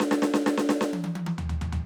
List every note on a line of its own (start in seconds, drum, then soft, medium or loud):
0.00 snare loud
0.11 snare loud
0.22 snare loud
0.34 snare loud
0.46 snare loud
0.58 snare loud
0.69 snare loud
0.81 snare loud
0.93 high tom loud
1.04 high tom loud
1.15 high tom loud
1.26 high tom loud
1.38 floor tom loud
1.49 floor tom loud
1.61 floor tom loud
1.72 floor tom loud